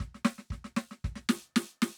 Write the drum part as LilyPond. \new DrumStaff \drummode { \time 4/4 \tempo 4 = 114 <bd sn>16 sn16 sn16 sn16 <bd sn>16 sn16 sn16 sn16 <bd sn>16 sn16 sn8 sn8 sn8 | }